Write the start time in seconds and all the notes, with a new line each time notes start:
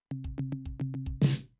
0.11 floor tom, high tom
0.24 kick
0.38 floor tom, high tom
0.52 floor tom, high tom
0.66 kick
0.80 floor tom, high tom
0.94 floor tom, high tom
1.06 kick
1.22 snare
1.24 snare